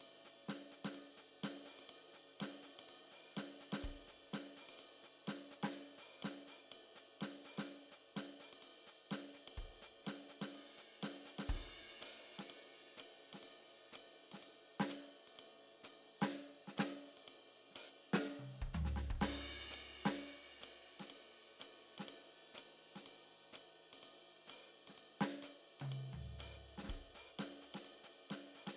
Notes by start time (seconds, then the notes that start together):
0.01 ride
0.25 hi-hat pedal
0.47 snare, hi-hat pedal, ride
0.72 hi-hat pedal
0.85 snare, ride
0.93 hi-hat pedal, ride
1.17 hi-hat pedal
1.40 snare, hi-hat pedal, ride
1.66 hi-hat pedal
1.79 ride
1.88 hi-hat pedal, ride
2.14 hi-hat pedal
2.37 hi-hat pedal, ride
2.42 snare
2.63 hi-hat pedal
2.79 ride
2.86 hi-hat pedal, ride
3.12 hi-hat pedal
3.35 snare, hi-hat pedal, ride
3.61 hi-hat pedal
3.72 snare, ride
3.83 kick, hi-hat pedal, ride
4.08 hi-hat pedal
4.31 snare, hi-hat pedal, ride
4.57 hi-hat pedal
4.69 ride
4.79 hi-hat pedal, ride
5.04 hi-hat pedal
5.26 snare, hi-hat pedal, ride
5.51 hi-hat pedal
5.63 snare, ride
5.74 hi-hat pedal, ride
5.98 hi-hat pedal
6.23 snare, ride
6.48 hi-hat pedal
6.71 hi-hat pedal, ride
6.96 hi-hat pedal
7.19 snare, hi-hat pedal, ride
7.45 hi-hat pedal
7.58 snare, ride
7.68 hi-hat pedal
7.92 hi-hat pedal
8.15 snare, hi-hat pedal, ride
8.40 hi-hat pedal
8.53 ride
8.62 hi-hat pedal, ride
8.87 hi-hat pedal
9.10 snare, hi-hat pedal, ride
9.34 hi-hat pedal
9.48 ride
9.58 kick, hi-hat pedal, ride
9.82 hi-hat pedal
10.04 snare, hi-hat pedal, ride
10.29 hi-hat pedal
10.42 snare, ride
10.52 hi-hat pedal, ride
10.78 hi-hat pedal
11.01 snare, hi-hat pedal, ride
11.25 hi-hat pedal
11.39 snare, ride
11.49 kick, ride
12.01 hi-hat pedal, ride
12.39 snare, ride
12.50 ride
12.97 hi-hat pedal, ride
13.33 snare, ride
13.43 hi-hat pedal, ride
13.93 hi-hat pedal, ride
14.32 snare, ride
14.40 hi-hat pedal, ride
14.80 snare
14.89 hi-hat pedal, ride
15.11 hi-hat pedal
15.28 ride
15.35 hi-hat pedal, ride
15.84 hi-hat pedal, ride
16.05 hi-hat pedal
16.22 snare, ride
16.31 hi-hat pedal, ride
16.68 snare
16.77 snare, hi-hat pedal, ride
17.17 ride
17.26 hi-hat pedal, ride
17.71 snare
17.76 hi-hat pedal, ride
17.97 hi-hat pedal
18.14 snare
18.23 hi-hat pedal
18.27 ride
18.39 high tom
18.53 high tom
18.62 kick
18.74 floor tom, hi-hat pedal
18.85 snare
18.96 snare
19.10 kick
19.19 snare, hi-hat pedal, ride
19.59 snare
19.71 hi-hat pedal, ride
20.06 snare, ride
20.17 hi-hat pedal, ride
20.39 hi-hat pedal
20.61 hi-hat pedal, ride
21.00 snare, ride
21.05 hi-hat pedal
21.10 ride
21.60 hi-hat pedal, ride
21.98 snare, ride
22.09 ride
22.55 hi-hat pedal, ride
22.96 snare, hi-hat pedal, ride
23.06 ride
23.53 hi-hat pedal, ride
23.93 hi-hat pedal, ride
24.03 ride
24.48 hi-hat pedal, ride
24.88 snare, ride
24.95 hi-hat pedal, ride
25.21 snare
25.43 hi-hat pedal, ride
25.80 high tom, ride
25.88 hi-hat pedal
25.92 ride
26.13 floor tom
26.39 hi-hat pedal, ride
26.78 snare, ride
26.84 snare, hi-hat pedal
26.87 kick, snare, ride
26.91 snare
27.15 hi-hat pedal
27.37 snare, hi-hat pedal, ride
27.62 hi-hat pedal
27.74 snare, ride
27.85 ride
28.04 hi-hat pedal
28.29 snare, hi-hat pedal, ride
28.55 hi-hat pedal
28.67 snare, ride